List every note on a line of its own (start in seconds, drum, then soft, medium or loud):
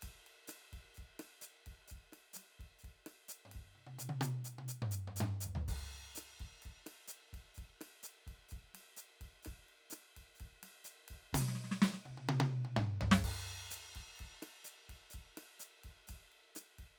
0.01 kick soft
0.01 snare soft
0.01 hi-hat pedal soft
0.01 ride medium
0.08 kick soft
0.26 ride soft
0.47 cross-stick soft
0.47 hi-hat pedal medium
0.47 ride medium
0.73 kick soft
0.73 ride soft
0.94 kick soft
0.94 hi-hat pedal soft
0.94 ride soft
1.19 cross-stick soft
1.19 snare soft
1.19 ride medium
1.41 hi-hat pedal medium
1.41 ride soft
1.66 kick soft
1.66 ride soft
1.88 kick soft
1.88 hi-hat pedal soft
1.88 ride soft
1.96 kick soft
2.12 cross-stick soft
2.12 snare soft
2.12 ride medium
2.33 snare soft
2.33 hi-hat pedal medium
2.33 ride medium
2.59 kick soft
2.59 ride soft
2.79 hi-hat pedal soft
2.84 kick soft
2.84 ride soft
3.06 cross-stick soft
3.06 ride medium
3.28 hi-hat pedal medium
3.28 ride soft
3.45 mid tom soft
3.51 kick soft
3.51 ride medium
3.60 kick soft
3.75 high tom soft
3.87 high tom soft
3.99 hi-hat pedal medium
3.99 high tom medium
4.09 high tom medium
4.21 hi-hat pedal medium
4.21 high tom loud
4.44 hi-hat pedal medium
4.44 high tom soft
4.58 high tom medium
4.68 hi-hat pedal medium
4.82 mid tom medium
4.91 hi-hat pedal medium
5.07 mid tom medium
5.16 hi-hat pedal medium
5.20 mid tom loud
5.41 hi-hat pedal loud
5.45 floor tom soft
5.55 floor tom medium
5.68 kick soft
5.68 hi-hat pedal medium
5.68 crash medium
5.75 kick soft
6.15 cross-stick soft
6.15 hi-hat pedal medium
6.15 ride medium
6.40 kick soft
6.40 ride soft
6.45 kick soft
6.62 kick soft
6.62 hi-hat pedal soft
6.62 ride soft
6.70 kick soft
6.86 cross-stick soft
6.86 ride medium
7.08 hi-hat pedal medium
7.08 ride soft
7.33 kick soft
7.33 ride soft
7.38 kick soft
7.54 kick soft
7.54 hi-hat pedal soft
7.54 ride soft
7.63 kick soft
7.81 cross-stick soft
7.81 snare soft
7.81 ride medium
8.03 hi-hat pedal medium
8.03 ride soft
8.27 kick soft
8.27 ride soft
8.32 kick soft
8.49 kick soft
8.49 hi-hat pedal soft
8.49 ride soft
8.57 kick soft
8.74 snare soft
8.74 ride medium
8.96 hi-hat pedal medium
8.96 ride soft
9.21 kick soft
9.21 ride soft
9.43 cross-stick soft
9.43 snare soft
9.43 hi-hat pedal soft
9.43 ride medium
9.47 kick soft
9.52 kick soft
9.69 ride soft
9.90 cross-stick soft
9.90 snare soft
9.90 hi-hat pedal medium
9.90 ride medium
10.17 kick soft
10.17 ride soft
10.35 hi-hat pedal soft
10.40 kick soft
10.40 ride soft
10.46 kick soft
10.63 snare soft
10.63 ride medium
10.84 hi-hat pedal medium
10.84 ride soft
11.08 kick soft
11.08 ride medium
11.33 kick soft
11.33 hi-hat pedal loud
11.33 high tom loud
11.41 snare soft
11.48 snare soft
11.55 snare soft
11.64 snare soft
11.71 snare medium
11.82 snare loud
11.93 snare soft
12.05 kick soft
12.05 high tom medium
12.18 high tom medium
12.28 kick soft
12.28 high tom loud
12.40 high tom loud
12.51 high tom soft
12.65 high tom medium
12.76 kick soft
12.76 mid tom loud
13.01 kick soft
13.01 floor tom medium
13.06 kick soft
13.11 snare loud
13.22 kick soft
13.22 crash medium
13.29 kick soft
13.71 hi-hat pedal medium
13.71 ride medium
13.95 kick soft
13.95 ride medium
14.15 hi-hat pedal soft
14.19 kick soft
14.19 ride soft
14.25 kick soft
14.42 cross-stick soft
14.42 snare soft
14.42 ride medium
14.64 hi-hat pedal medium
14.64 ride soft
14.89 kick soft
14.89 ride soft
15.10 kick soft
15.10 hi-hat pedal medium
15.10 ride soft
15.19 kick soft
15.37 cross-stick soft
15.37 ride medium
15.60 hi-hat pedal medium
15.60 ride soft
15.84 kick soft
15.84 ride soft
16.07 kick soft
16.07 snare soft
16.07 hi-hat pedal soft
16.07 ride medium
16.14 kick soft
16.32 ride soft
16.55 cross-stick soft
16.55 snare soft
16.55 hi-hat pedal medium
16.55 ride medium
16.79 kick soft
16.79 ride soft